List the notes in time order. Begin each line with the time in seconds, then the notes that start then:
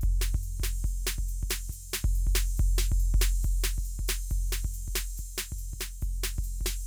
0.01 open hi-hat, kick
0.21 open hi-hat, snare
0.34 kick, snare
0.43 open hi-hat
0.60 kick, snare
0.64 open hi-hat
0.82 kick, snare
0.86 open hi-hat
1.07 open hi-hat, snare
1.18 kick
1.28 open hi-hat
1.43 kick
1.50 open hi-hat, snare
1.69 open hi-hat, kick, snare
1.93 open hi-hat, snare
2.04 kick
2.08 snare
2.15 open hi-hat
2.27 kick
2.35 open hi-hat, snare
2.56 open hi-hat, kick, snare
2.78 open hi-hat, snare
2.92 kick
3.00 open hi-hat
3.14 kick
3.21 open hi-hat, snare
3.43 open hi-hat, kick
3.64 open hi-hat, snare
3.78 kick
3.83 open hi-hat, snare
3.99 kick
4.08 open hi-hat, snare
4.30 open hi-hat, kick
4.52 open hi-hat, snare
4.65 kick
4.72 open hi-hat, snare
4.88 kick
4.95 open hi-hat, snare
5.16 open hi-hat, kick, snare
5.38 open hi-hat, snare
5.52 kick
5.58 open hi-hat
5.73 kick
5.80 open hi-hat, snare
6.02 open hi-hat, kick
6.23 open hi-hat, snare
6.37 kick, snare
6.44 open hi-hat
6.61 kick
6.66 open hi-hat, snare